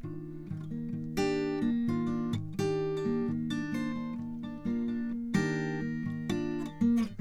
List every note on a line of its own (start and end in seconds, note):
0.05 0.47 D#3
0.05 0.51 D4
0.05 0.50 F4
0.52 0.94 D#3
0.72 1.58 A#3
0.94 1.81 D#3
1.18 1.75 D4
1.18 1.63 G4
1.63 2.39 A#3
1.89 2.34 D#3
1.89 2.05 D4
1.89 2.40 F4
2.08 2.42 D4
2.34 2.57 D#3
2.60 3.25 D#3
2.60 3.02 D4
2.60 3.30 G4
3.03 3.34 D4
3.07 3.65 A#3
3.30 4.17 D#3
3.51 3.95 D4
3.73 4.60 A#3
3.73 3.92 F4
3.73 4.19 C5
3.97 4.37 D4
4.20 5.13 D#3
4.44 4.85 D4
4.66 5.83 A#3
4.66 5.10 F4
4.66 5.18 A#4
4.89 5.17 D4
5.35 6.07 D#3
5.35 5.84 D4
5.35 5.85 G4
5.35 6.83 A#4
5.83 6.71 A#3
6.07 6.96 D#3
6.30 6.72 D4
6.30 6.73 F4
6.82 7.07 A#3